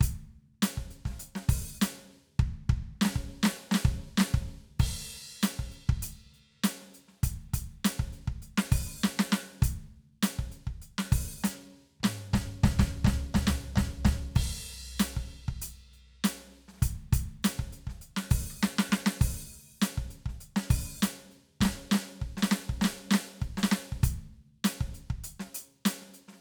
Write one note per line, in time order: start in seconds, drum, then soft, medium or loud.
0.01 closed hi-hat loud
0.01 kick loud
0.54 kick soft
0.63 closed hi-hat loud
0.63 snare loud
0.78 kick medium
0.91 closed hi-hat soft
1.06 kick medium
1.06 snare soft
1.10 snare soft
1.13 snare soft
1.16 closed hi-hat medium
1.16 snare soft
1.36 snare medium
1.49 open hi-hat loud
1.49 kick loud
1.78 hi-hat pedal soft
1.82 closed hi-hat loud
1.82 snare loud
2.40 kick loud
2.70 kick loud
3.02 snare loud
3.05 snare loud
3.16 kick medium
3.43 snare loud
3.46 snare loud
3.72 snare loud
3.74 snare loud
3.85 kick loud
4.18 snare loud
4.20 snare loud
4.34 kick loud
4.80 kick loud
4.80 crash loud
5.43 closed hi-hat loud
5.43 snare loud
5.59 kick medium
5.72 closed hi-hat soft
5.89 kick loud
6.03 closed hi-hat loud
6.34 closed hi-hat soft
6.64 closed hi-hat loud
6.64 snare loud
6.82 snare soft
6.94 closed hi-hat soft
7.08 snare soft
7.12 snare soft
7.17 snare soft
7.23 closed hi-hat loud
7.23 kick loud
7.54 closed hi-hat loud
7.54 kick medium
7.85 closed hi-hat loud
7.85 snare loud
8.00 kick medium
8.13 closed hi-hat soft
8.28 kick medium
8.28 crash soft
8.32 ride soft
8.42 closed hi-hat medium
8.58 snare loud
8.72 open hi-hat loud
8.72 kick loud
9.02 snare loud
9.02 hi-hat pedal medium
9.19 snare loud
9.32 snare loud
9.62 closed hi-hat loud
9.62 kick loud
10.23 closed hi-hat loud
10.23 snare loud
10.39 kick medium
10.52 closed hi-hat soft
10.67 kick medium
10.72 ride soft
10.82 closed hi-hat medium
10.98 snare loud
11.12 open hi-hat loud
11.12 kick loud
11.42 closed hi-hat loud
11.42 snare loud
11.42 hi-hat pedal medium
12.00 kick soft
12.00 mid tom loud
12.04 snare loud
12.34 kick medium
12.34 snare loud
12.34 mid tom loud
12.64 kick loud
12.64 snare loud
12.64 floor tom loud
12.79 kick loud
12.79 snare loud
12.79 floor tom loud
13.05 kick loud
13.05 snare loud
13.05 floor tom loud
13.35 kick medium
13.35 snare loud
13.35 floor tom loud
13.47 snare loud
13.47 floor tom loud
13.76 kick loud
13.76 snare loud
13.76 floor tom loud
14.05 kick loud
14.05 snare loud
14.05 floor tom loud
14.36 kick loud
14.36 crash loud
14.96 kick soft
15.00 closed hi-hat loud
15.00 snare loud
15.17 kick medium
15.29 closed hi-hat soft
15.48 kick medium
15.62 closed hi-hat loud
15.94 closed hi-hat soft
16.24 closed hi-hat loud
16.24 snare loud
16.68 snare soft
16.74 snare soft
16.77 snare soft
16.82 closed hi-hat loud
16.82 kick loud
16.82 snare soft
17.13 closed hi-hat loud
17.13 kick loud
17.43 closed hi-hat loud
17.43 snare loud
17.43 hi-hat pedal soft
17.59 kick medium
17.73 closed hi-hat medium
17.87 kick medium
17.87 snare soft
17.97 snare soft
18.02 closed hi-hat medium
18.17 snare loud
18.31 open hi-hat loud
18.31 kick loud
18.50 cross-stick soft
18.62 snare loud
18.62 hi-hat pedal medium
18.79 snare loud
18.89 kick soft
18.89 snare loud
19.06 snare loud
19.21 open hi-hat loud
19.21 kick loud
19.72 kick soft
19.82 open hi-hat loud
19.82 snare loud
19.82 hi-hat pedal medium
19.98 kick medium
20.11 closed hi-hat soft
20.26 kick medium
20.26 snare soft
20.26 crash soft
20.41 closed hi-hat medium
20.56 snare loud
20.71 open hi-hat loud
20.71 kick loud
21.00 closed hi-hat loud
21.00 snare loud
21.00 hi-hat pedal medium
21.31 closed hi-hat soft
21.61 kick medium
21.61 snare loud
21.65 snare loud
21.92 snare loud
21.92 hi-hat pedal medium
21.95 snare loud
22.22 kick medium
22.37 snare medium
22.43 snare loud
22.51 snare loud
22.51 hi-hat pedal medium
22.70 kick medium
22.82 snare loud
22.84 snare loud
23.11 snare loud
23.14 snare loud
23.41 kick medium
23.41 hi-hat pedal soft
23.58 snare loud
23.63 snare loud
23.70 snare loud
23.70 hi-hat pedal soft
23.92 kick medium
24.03 closed hi-hat loud
24.03 kick loud
24.03 hi-hat pedal soft
24.65 open hi-hat loud
24.65 snare loud
24.65 hi-hat pedal medium
24.81 kick medium
24.95 closed hi-hat soft
25.10 kick medium
25.24 closed hi-hat loud
25.40 snare medium
25.55 closed hi-hat loud
25.86 closed hi-hat loud
25.86 snare loud
26.02 snare soft
26.08 snare soft
26.14 closed hi-hat soft
26.28 snare soft
26.33 snare soft